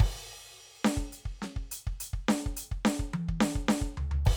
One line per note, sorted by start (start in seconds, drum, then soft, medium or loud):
0.00 kick loud
0.00 crash loud
0.75 hi-hat pedal soft
0.84 snare loud
0.97 kick medium
1.12 closed hi-hat medium
1.25 kick medium
1.42 snare medium
1.56 kick medium
1.71 closed hi-hat loud
1.87 kick medium
2.00 closed hi-hat loud
2.13 kick medium
2.28 snare loud
2.46 kick medium
2.57 closed hi-hat loud
2.71 kick medium
2.85 snare loud
2.99 kick medium
3.13 high tom loud
3.28 kick medium
3.40 snare loud
3.55 kick medium
3.68 snare loud
3.81 kick medium
3.97 floor tom loud
4.11 floor tom loud
4.25 kick loud
4.25 crash loud